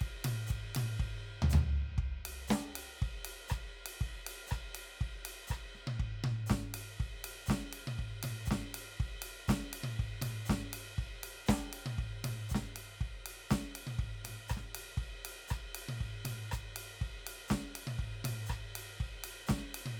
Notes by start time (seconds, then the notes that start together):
0.01 kick, ride
0.25 high tom, ride
0.47 kick, hi-hat pedal
0.75 high tom, ride
1.00 kick
1.42 floor tom
1.50 floor tom, hi-hat pedal
1.98 kick
2.25 ride
2.48 kick, snare, hi-hat pedal
2.76 ride
2.97 hi-hat pedal
3.02 kick
3.25 ride
3.48 kick, cross-stick, hi-hat pedal
3.86 ride
4.01 kick
4.27 ride
4.47 cross-stick, hi-hat pedal
4.52 kick
4.75 ride
5.01 kick
5.25 ride
5.47 kick, hi-hat pedal
5.51 cross-stick
5.74 snare
5.87 high tom
6.00 kick
6.24 high tom
6.46 snare, hi-hat pedal
6.51 kick
6.74 ride
7.00 kick
7.24 ride
7.46 kick, snare, hi-hat pedal
7.73 ride
7.88 high tom
7.99 kick
8.23 high tom, ride
8.46 kick, hi-hat pedal
8.51 snare
8.75 ride
9.00 kick
9.22 ride
9.48 kick, snare, hi-hat pedal
9.73 ride
9.84 high tom
9.99 kick
10.22 closed hi-hat, high tom, ride
10.46 kick, hi-hat pedal
10.50 snare
10.73 ride
10.98 kick
11.24 ride
11.47 kick, snare, hi-hat pedal
11.73 ride
11.86 high tom
11.98 kick
12.24 closed hi-hat, high tom, ride
12.49 kick, hi-hat pedal
12.55 snare
12.76 ride
13.01 kick
13.26 ride
13.50 kick, snare, hi-hat pedal
13.75 ride
13.87 closed hi-hat, high tom
13.99 kick
14.25 closed hi-hat, high tom, ride
14.49 kick, cross-stick, hi-hat pedal
14.56 snare
14.75 ride
14.97 kick
15.25 ride
15.48 kick, cross-stick, hi-hat pedal
15.75 ride
15.89 high tom
16.01 kick
16.25 closed hi-hat, high tom, ride
16.52 kick, cross-stick, hi-hat pedal
16.76 ride
17.01 kick
17.27 ride
17.48 kick, snare, hi-hat pedal
17.76 ride
17.87 closed hi-hat, high tom
17.99 kick
18.25 high tom, ride
18.46 kick, cross-stick, hi-hat pedal
18.76 ride
19.00 kick
19.24 ride
19.47 kick, snare, hi-hat pedal
19.57 snare
19.75 ride
19.86 high tom